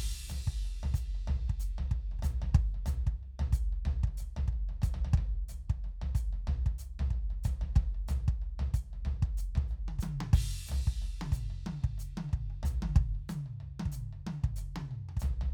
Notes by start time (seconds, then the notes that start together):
0.29 floor tom, hi-hat pedal
0.48 kick
0.66 floor tom
0.84 floor tom
0.95 kick, hi-hat pedal
1.15 floor tom
1.28 floor tom
1.48 kick, floor tom
1.60 floor tom, hi-hat pedal
1.79 floor tom
1.92 kick, floor tom
2.12 floor tom
2.20 kick, floor tom
2.24 hi-hat pedal
2.42 floor tom
2.55 kick, floor tom
2.75 floor tom
2.86 floor tom, hi-hat pedal
3.07 kick, floor tom
3.23 floor tom
3.40 floor tom
3.53 kick, floor tom, hi-hat pedal
3.73 floor tom
3.86 floor tom
4.04 kick, floor tom
4.18 floor tom, hi-hat pedal
4.37 floor tom
4.48 kick
4.53 floor tom
4.69 floor tom
4.82 kick, floor tom, hi-hat pedal
4.95 floor tom
5.05 floor tom
5.14 kick
5.18 floor tom
5.34 kick
5.49 floor tom, hi-hat pedal
5.70 kick, floor tom
5.85 floor tom
6.02 floor tom
6.15 kick, floor tom, hi-hat pedal
6.33 floor tom
6.48 floor tom
6.66 kick, floor tom
6.79 floor tom, hi-hat pedal
7.00 floor tom
7.11 kick, floor tom
7.31 floor tom
7.44 kick, floor tom, hi-hat pedal
7.62 floor tom
7.76 kick, floor tom
7.95 floor tom
8.09 floor tom, hi-hat pedal
8.29 kick, floor tom
8.42 floor tom
8.60 floor tom
8.74 kick, floor tom, hi-hat pedal
8.94 floor tom
9.06 floor tom
9.23 kick, floor tom
9.38 floor tom, hi-hat pedal
9.56 kick, floor tom
9.69 floor tom, hi-hat pedal
9.89 high tom
9.99 kick, hi-hat pedal
10.03 high tom
10.21 high tom
10.34 kick, crash
10.67 floor tom, hi-hat pedal
10.72 floor tom
10.88 kick
11.02 floor tom
11.22 high tom
11.32 kick, floor tom, hi-hat pedal
11.51 floor tom
11.67 high tom
11.84 kick, floor tom
11.98 floor tom, hi-hat pedal
12.18 high tom
12.30 kick, floor tom
12.50 high tom
12.64 kick, floor tom, hi-hat pedal
12.83 high tom
12.96 kick, floor tom
13.15 floor tom
13.30 hi-hat pedal, high tom
13.46 floor tom
13.61 floor tom
13.80 high tom
13.86 kick
13.92 floor tom, hi-hat pedal
14.13 floor tom
14.27 high tom
14.44 kick, floor tom
14.57 floor tom, hi-hat pedal
14.76 high tom
14.83 kick
14.91 floor tom
15.09 high tom
15.17 kick, hi-hat pedal
15.22 floor tom
15.42 floor tom